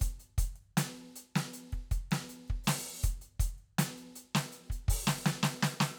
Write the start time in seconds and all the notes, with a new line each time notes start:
0.01 closed hi-hat, kick, hi-hat pedal
0.20 closed hi-hat
0.39 closed hi-hat, kick
0.56 closed hi-hat
0.78 closed hi-hat, snare
0.97 closed hi-hat
1.16 closed hi-hat
1.36 closed hi-hat, snare
1.54 closed hi-hat
1.73 kick, closed hi-hat
1.92 closed hi-hat, kick
2.12 snare, closed hi-hat
2.30 closed hi-hat
2.49 kick, closed hi-hat
2.65 open hi-hat, snare, hi-hat pedal
3.03 closed hi-hat, kick, hi-hat pedal
3.22 closed hi-hat
3.40 closed hi-hat, kick
3.59 closed hi-hat
3.79 closed hi-hat, snare
3.98 closed hi-hat
4.16 closed hi-hat
4.35 closed hi-hat, snare
4.53 closed hi-hat
4.71 closed hi-hat, kick
4.89 open hi-hat, kick
5.08 snare
5.26 snare, hi-hat pedal
5.44 snare
5.63 snare
5.81 snare